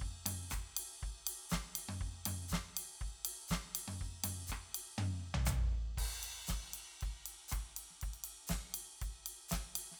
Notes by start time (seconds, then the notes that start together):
0.01 kick
0.26 high tom, ride
0.50 kick, cross-stick, hi-hat pedal
0.77 ride
1.02 kick
1.27 ride
1.49 kick, snare, hi-hat pedal
1.75 ride
1.89 open hi-hat, high tom
2.01 kick
2.25 closed hi-hat, high tom, ride
2.48 kick, hi-hat pedal
2.53 snare
2.77 ride
3.01 kick
3.25 ride
3.48 kick, snare, hi-hat pedal
3.75 ride
3.88 closed hi-hat, high tom
4.01 kick
4.24 high tom, ride
4.47 kick, hi-hat pedal
4.52 cross-stick
4.74 ride
4.98 high tom
5.34 floor tom
5.45 floor tom, hi-hat pedal
5.97 kick, crash
6.23 ride
6.47 kick, snare, hi-hat pedal, ride
6.73 ride
7.01 kick, ride
7.26 ride
7.48 cross-stick, hi-hat pedal
7.52 kick, ride
7.76 ride
7.90 snare
8.01 kick, ride
8.13 ride
8.24 ride
8.47 kick, snare, hi-hat pedal, ride
8.74 ride
9.01 kick, ride
9.26 ride
9.48 snare, hi-hat pedal, ride
9.53 kick
9.75 ride
9.91 snare